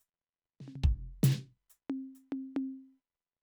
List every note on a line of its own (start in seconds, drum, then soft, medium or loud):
0.01 hi-hat pedal soft
0.60 snare soft
0.68 high tom soft
0.75 floor tom medium
0.84 kick medium
1.23 open hi-hat loud
1.23 snare loud
1.32 open hi-hat soft
1.70 hi-hat pedal medium
1.90 high tom loud
2.15 hi-hat pedal soft
2.32 high tom loud
2.56 high tom loud